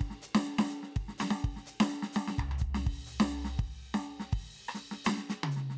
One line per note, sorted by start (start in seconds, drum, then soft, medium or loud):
0.01 kick soft
0.01 ride medium
0.07 kick soft
0.07 snare soft
0.22 hi-hat pedal loud
0.22 ride soft
0.35 snare loud
0.49 ride soft
0.59 snare loud
0.64 snare medium
0.70 hi-hat pedal medium
0.70 ride medium
0.83 snare soft
0.96 kick soft
0.96 ride medium
1.02 kick soft
1.09 snare soft
1.18 snare loud
1.18 hi-hat pedal loud
1.31 snare loud
1.44 kick medium
1.44 crash medium
1.54 kick soft
1.54 snare soft
1.66 hi-hat pedal loud
1.66 ride medium
1.80 snare loud
1.93 ride medium
2.03 snare medium
2.13 snare loud
2.13 hi-hat pedal loud
2.28 snare medium
2.39 kick soft
2.39 floor tom loud
2.51 floor tom loud
2.58 kick soft
2.58 hi-hat pedal medium
2.75 snare medium
2.87 kick medium
2.87 crash medium
2.95 kick soft
2.95 cross-stick soft
3.06 hi-hat pedal medium
3.10 closed hi-hat medium
3.20 snare loud
3.35 closed hi-hat soft
3.45 snare medium
3.57 kick medium
3.57 hi-hat pedal soft
3.57 crash medium
3.61 snare soft
3.67 kick soft
3.83 open hi-hat soft
3.95 snare medium
4.08 open hi-hat soft
4.20 snare medium
4.33 kick medium
4.33 crash medium
4.39 kick soft
4.39 snare soft
4.44 kick soft
4.57 open hi-hat soft
4.69 cross-stick medium
4.75 snare soft
4.75 hi-hat pedal medium
4.92 snare soft
5.05 snare loud
5.05 hi-hat pedal medium
5.18 snare medium
5.29 snare medium
5.29 hi-hat pedal medium
5.44 high tom loud
5.51 hi-hat pedal medium
5.57 snare soft
5.70 snare soft